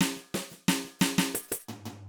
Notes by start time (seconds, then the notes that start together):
0.01 snare
0.17 snare
0.34 snare
0.50 snare, hi-hat pedal
0.68 snare
0.84 snare
0.99 snare, hi-hat pedal
1.18 snare
1.35 high tom
1.48 hi-hat pedal, high tom
1.68 floor tom
1.85 floor tom